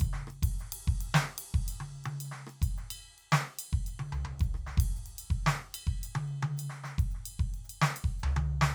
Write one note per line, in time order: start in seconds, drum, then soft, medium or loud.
0.00 kick medium
0.00 hi-hat pedal medium
0.00 ride bell medium
0.13 snare soft
0.27 cross-stick soft
0.27 ride soft
0.43 kick medium
0.43 ride loud
0.59 snare soft
0.59 hi-hat pedal medium
0.72 ride loud
0.84 kick medium
0.84 hi-hat pedal soft
1.01 ride medium
1.14 snare loud
1.14 hi-hat pedal medium
1.38 hi-hat pedal soft
1.38 ride loud
1.54 kick medium
1.68 hi-hat pedal medium
1.68 ride bell medium
1.80 high tom medium
1.95 hi-hat pedal soft
2.04 high tom loud
2.04 ride soft
2.21 hi-hat pedal medium
2.21 ride bell medium
2.32 snare soft
2.47 cross-stick medium
2.47 ride soft
2.62 kick medium
2.62 ride bell medium
2.77 snare soft
2.77 hi-hat pedal medium
2.91 ride bell loud
3.01 hi-hat pedal soft
3.18 ride soft
3.32 snare loud
3.32 hi-hat pedal medium
3.59 ride bell medium
3.73 kick medium
3.87 hi-hat pedal medium
3.87 ride bell soft
4.00 high tom loud
4.12 floor tom loud
4.12 hi-hat pedal soft
4.25 floor tom loud
4.40 kick medium
4.40 hi-hat pedal medium
4.40 ride soft
4.54 cross-stick soft
4.67 snare soft
4.67 hi-hat pedal soft
4.78 kick medium
4.78 ride loud
4.96 hi-hat pedal medium
5.06 ride medium
5.19 ride bell medium
5.30 kick medium
5.46 snare loud
5.46 hi-hat pedal medium
5.73 hi-hat pedal soft
5.73 ride bell loud
5.87 kick medium
6.03 hi-hat pedal medium
6.03 ride bell medium
6.15 high tom loud
6.27 hi-hat pedal soft
6.43 high tom loud
6.57 hi-hat pedal medium
6.57 ride bell medium
6.70 snare soft
6.84 snare medium
6.84 ride soft
6.98 kick medium
6.98 ride medium
7.11 hi-hat pedal medium
7.15 snare soft
7.26 ride bell medium
7.35 hi-hat pedal soft
7.40 kick medium
7.54 ride soft
7.65 hi-hat pedal medium
7.70 ride bell medium
7.82 snare loud
7.96 ride bell medium
8.04 kick medium
8.19 hi-hat pedal medium
8.24 floor tom loud
8.37 high tom loud
8.61 snare loud